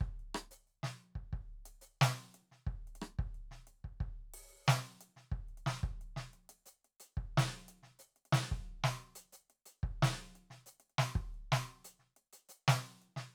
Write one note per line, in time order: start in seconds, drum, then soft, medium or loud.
0.01 kick medium
0.20 closed hi-hat soft
0.35 cross-stick medium
0.51 hi-hat pedal medium
0.67 open hi-hat soft
0.83 snare medium
1.16 kick soft
1.33 kick medium
1.66 closed hi-hat medium
1.82 hi-hat pedal medium
2.01 snare loud
2.08 snare soft
2.34 closed hi-hat soft
2.52 snare soft
2.67 kick medium
2.87 closed hi-hat soft
2.95 closed hi-hat soft
3.02 cross-stick medium
3.19 kick medium
3.35 closed hi-hat soft
3.51 snare soft
3.67 closed hi-hat soft
3.84 kick soft
4.01 kick medium
4.34 open hi-hat medium
4.67 snare loud
4.67 hi-hat pedal soft
4.75 snare soft
5.01 closed hi-hat medium
5.17 snare soft
5.32 kick medium
5.49 closed hi-hat soft
5.58 closed hi-hat soft
5.66 snare medium
5.83 kick medium
6.01 closed hi-hat soft
6.17 snare medium
6.33 closed hi-hat soft
6.49 closed hi-hat medium
6.66 hi-hat pedal medium
6.85 closed hi-hat soft
7.00 closed hi-hat medium
7.17 kick medium
7.38 snare loud
7.53 snare soft
7.68 closed hi-hat medium
7.83 snare soft
7.99 hi-hat pedal medium
8.16 closed hi-hat soft
8.25 closed hi-hat soft
8.33 snare loud
8.52 kick medium
8.67 closed hi-hat soft
8.84 snare loud
8.93 snare soft
9.16 closed hi-hat medium
9.33 hi-hat pedal medium
9.50 closed hi-hat soft
9.66 closed hi-hat medium
9.83 kick medium
10.03 snare loud
10.10 snare soft
10.36 closed hi-hat soft
10.50 snare soft
10.66 hi-hat pedal medium
10.80 closed hi-hat soft
10.90 closed hi-hat soft
10.98 snare loud
11.06 snare soft
11.16 kick medium
11.34 closed hi-hat soft
11.52 snare loud
11.85 closed hi-hat medium
11.99 snare soft
12.17 closed hi-hat soft
12.33 closed hi-hat medium
12.49 hi-hat pedal medium
12.68 snare loud
12.75 snare soft
13.02 closed hi-hat soft
13.17 snare medium